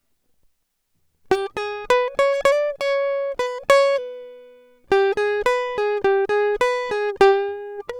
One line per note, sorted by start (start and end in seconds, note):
1.32 1.52 G4
1.57 1.87 G#4
1.91 2.13 B4
2.20 2.43 C#5
2.46 2.77 D5
2.81 3.36 C#5
3.40 3.63 B4
3.70 3.97 C#5
3.97 4.84 B4
4.92 5.15 G4
5.18 5.45 G#4
5.47 5.86 B4
5.79 6.01 G#4
6.05 6.28 G4
6.30 6.59 G#4
6.62 7.00 B4
6.92 7.16 G#4
7.21 7.84 G4